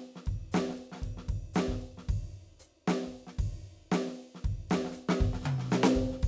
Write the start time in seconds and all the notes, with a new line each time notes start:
0.01 crash
0.16 snare
0.27 kick, crash
0.52 snare, hi-hat pedal, crash
0.70 snare
0.72 snare
0.78 crash
0.92 snare
0.95 snare
1.02 kick, crash
1.18 snare
1.29 kick, crash
1.54 snare, hi-hat pedal, crash
1.68 kick, snare
1.82 crash
1.98 snare
2.09 kick, crash
2.37 crash
2.60 hi-hat pedal, crash
2.88 snare, crash
3.03 kick, snare
3.09 hi-hat pedal
3.13 crash
3.27 snare
3.39 kick, crash
3.65 hi-hat pedal, crash
3.92 snare, crash
4.08 snare
4.15 hi-hat pedal, crash
4.35 snare
4.45 kick, crash
4.68 snare, hi-hat pedal, crash
4.85 snare
4.91 snare, hi-hat pedal
4.95 crash
5.09 snare
5.21 kick, crash
5.34 snare
5.42 snare, hi-hat pedal, high tom
5.59 snare
5.63 kick, snare
5.66 snare
5.71 snare, hi-hat pedal
5.84 snare
5.96 kick, snare
6.12 snare
6.21 kick, hi-hat pedal, crash